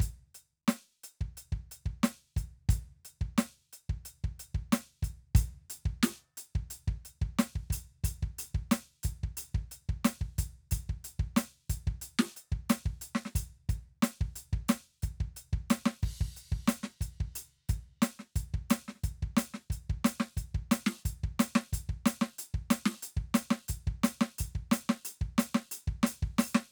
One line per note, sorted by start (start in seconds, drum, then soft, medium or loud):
0.01 closed hi-hat loud
0.01 kick medium
0.35 closed hi-hat medium
0.68 closed hi-hat loud
0.68 snare loud
1.04 closed hi-hat medium
1.21 kick medium
1.38 closed hi-hat medium
1.53 kick medium
1.72 closed hi-hat medium
1.86 kick medium
2.04 closed hi-hat loud
2.04 snare loud
2.37 closed hi-hat medium
2.37 kick medium
2.69 closed hi-hat loud
2.69 kick loud
3.05 closed hi-hat medium
3.22 kick medium
3.38 closed hi-hat loud
3.38 snare loud
3.73 closed hi-hat medium
3.90 kick medium
4.06 closed hi-hat medium
4.24 kick medium
4.40 closed hi-hat medium
4.55 kick medium
4.73 closed hi-hat loud
4.73 snare loud
5.03 closed hi-hat medium
5.03 kick medium
5.35 closed hi-hat loud
5.35 kick loud
5.70 closed hi-hat loud
5.86 kick medium
6.03 closed hi-hat loud
6.03 snare loud
6.38 closed hi-hat loud
6.56 kick medium
6.71 closed hi-hat loud
6.88 kick medium
7.06 closed hi-hat medium
7.22 kick medium
7.39 closed hi-hat loud
7.39 snare loud
7.56 kick medium
7.71 closed hi-hat loud
7.71 kick medium
8.04 closed hi-hat loud
8.04 kick medium
8.23 kick medium
8.39 closed hi-hat loud
8.55 kick medium
8.72 closed hi-hat loud
8.72 snare loud
9.04 closed hi-hat loud
9.04 kick medium
9.24 kick medium
9.38 closed hi-hat loud
9.55 kick medium
9.72 closed hi-hat medium
9.89 kick medium
10.05 closed hi-hat loud
10.05 snare loud
10.22 kick medium
10.39 closed hi-hat loud
10.39 kick medium
10.72 closed hi-hat loud
10.72 kick medium
10.90 kick medium
11.05 closed hi-hat loud
11.20 kick medium
11.37 closed hi-hat loud
11.37 snare loud
11.70 closed hi-hat loud
11.70 kick medium
11.88 kick medium
12.02 closed hi-hat loud
12.19 snare loud
12.37 closed hi-hat medium
12.52 kick medium
12.70 closed hi-hat loud
12.70 snare loud
12.86 kick medium
13.02 closed hi-hat loud
13.16 snare medium
13.26 snare medium
13.36 closed hi-hat loud
13.36 kick medium
13.70 closed hi-hat medium
13.70 kick medium
14.03 closed hi-hat loud
14.03 snare loud
14.21 kick medium
14.36 closed hi-hat loud
14.53 kick medium
14.69 closed hi-hat loud
14.69 snare loud
15.03 closed hi-hat medium
15.03 kick medium
15.21 kick medium
15.37 closed hi-hat medium
15.53 kick medium
15.71 closed hi-hat loud
15.71 snare loud
15.86 snare loud
16.03 kick medium
16.03 crash medium
16.21 kick medium
16.37 closed hi-hat medium
16.52 kick medium
16.68 closed hi-hat loud
16.68 snare loud
16.84 snare medium
17.01 closed hi-hat medium
17.01 kick medium
17.21 kick medium
17.36 closed hi-hat loud
17.69 closed hi-hat medium
17.69 kick medium
18.03 closed hi-hat loud
18.03 snare loud
18.20 snare soft
18.36 closed hi-hat medium
18.36 kick medium
18.54 kick medium
18.71 closed hi-hat loud
18.71 snare loud
18.89 snare medium
18.96 snare soft
19.04 closed hi-hat medium
19.04 kick medium
19.23 kick medium
19.37 closed hi-hat loud
19.37 snare loud
19.54 snare medium
19.71 closed hi-hat medium
19.71 kick medium
19.90 kick medium
20.05 closed hi-hat loud
20.05 snare loud
20.20 snare medium
20.37 closed hi-hat medium
20.37 kick medium
20.55 kick medium
20.72 closed hi-hat loud
20.72 snare loud
20.87 snare loud
21.06 closed hi-hat loud
21.06 kick medium
21.24 kick medium
21.40 closed hi-hat loud
21.40 snare loud
21.56 snare loud
21.73 closed hi-hat loud
21.73 kick medium
21.90 kick medium
22.06 closed hi-hat loud
22.06 snare loud
22.22 snare loud
22.39 closed hi-hat loud
22.55 kick medium
22.71 closed hi-hat loud
22.71 snare loud
22.86 snare loud
22.93 snare soft
23.03 closed hi-hat loud
23.17 kick medium
23.35 closed hi-hat loud
23.35 snare loud
23.51 snare loud
23.69 closed hi-hat loud
23.69 kick medium
23.88 kick medium
24.04 closed hi-hat loud
24.04 snare loud
24.21 snare loud
24.39 closed hi-hat loud
24.39 kick medium
24.56 kick medium
24.72 closed hi-hat loud
24.72 snare loud
24.90 snare loud
25.05 closed hi-hat loud
25.22 kick medium
25.39 closed hi-hat loud
25.39 snare loud
25.55 snare loud
25.72 closed hi-hat loud
25.88 kick medium
26.04 closed hi-hat loud
26.04 snare loud
26.23 kick medium
26.39 open hi-hat loud
26.39 snare loud
26.55 snare loud